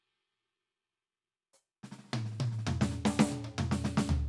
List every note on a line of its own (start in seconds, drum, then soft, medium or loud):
1.53 hi-hat pedal soft
1.83 snare soft
1.91 snare soft
1.98 snare soft
2.04 snare soft
2.08 snare soft
2.13 high tom loud
2.25 snare soft
2.31 snare soft
2.35 snare soft
2.40 high tom loud
2.51 snare soft
2.58 snare soft
2.64 snare soft
2.64 mid tom loud
2.81 snare loud
3.05 snare loud
3.19 snare loud
3.32 high tom medium
3.44 high tom medium
3.58 mid tom loud
3.71 snare medium
3.84 snare medium
3.97 snare loud
4.09 floor tom loud